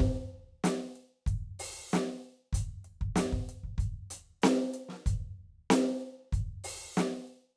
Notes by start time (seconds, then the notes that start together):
0.01 kick
0.65 closed hi-hat, snare
0.96 closed hi-hat
1.27 kick, closed hi-hat
1.60 open hi-hat
1.93 snare, closed hi-hat, hi-hat pedal
2.25 closed hi-hat
2.54 closed hi-hat, kick
2.85 closed hi-hat
3.02 kick
3.17 closed hi-hat, snare
3.33 kick
3.50 closed hi-hat
3.64 kick
3.79 closed hi-hat, kick
4.11 open hi-hat
4.43 closed hi-hat, snare, hi-hat pedal
4.75 closed hi-hat
4.90 snare
4.93 snare
5.02 snare
5.05 closed hi-hat, kick, snare
5.71 closed hi-hat, snare
6.02 closed hi-hat
6.33 closed hi-hat, kick
6.65 open hi-hat
6.98 snare, hi-hat pedal
7.28 closed hi-hat